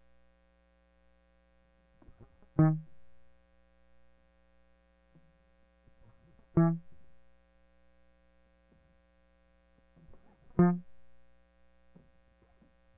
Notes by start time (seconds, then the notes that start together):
2.60 D#3
6.59 E3
10.60 F3